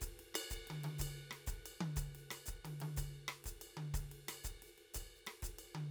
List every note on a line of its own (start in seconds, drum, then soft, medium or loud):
0.01 kick soft
0.01 hi-hat pedal medium
0.01 ride soft
0.19 ride soft
0.35 cross-stick medium
0.35 ride bell loud
0.50 kick soft
0.50 hi-hat pedal medium
0.67 high tom medium
0.67 ride soft
0.71 hi-hat pedal soft
0.84 high tom medium
0.84 ride soft
0.99 kick soft
0.99 hi-hat pedal medium
0.99 ride bell medium
1.31 cross-stick medium
1.31 ride soft
1.47 kick soft
1.47 hi-hat pedal medium
1.47 ride soft
1.66 ride bell medium
1.81 high tom medium
1.96 kick soft
1.96 hi-hat pedal medium
1.96 ride bell soft
2.15 hi-hat pedal soft
2.15 ride soft
2.31 cross-stick medium
2.31 ride bell medium
2.46 kick soft
2.46 hi-hat pedal medium
2.65 high tom medium
2.65 ride soft
2.80 high tom medium
2.80 ride soft
2.97 kick soft
2.97 hi-hat pedal medium
2.97 ride bell medium
3.28 cross-stick medium
3.28 ride soft
3.44 kick soft
3.44 hi-hat pedal medium
3.44 ride soft
3.61 ride bell soft
3.77 high tom medium
3.94 kick soft
3.94 hi-hat pedal medium
3.94 ride soft
4.12 ride soft
4.28 cross-stick medium
4.28 ride bell medium
4.44 kick soft
4.44 hi-hat pedal medium
4.62 ride soft
4.66 hi-hat pedal soft
4.78 ride soft
4.94 kick soft
4.94 hi-hat pedal medium
4.94 ride bell medium
5.16 hi-hat pedal soft
5.27 cross-stick medium
5.27 ride medium
5.43 kick soft
5.43 hi-hat pedal medium
5.43 ride soft
5.59 ride bell soft
5.75 high tom medium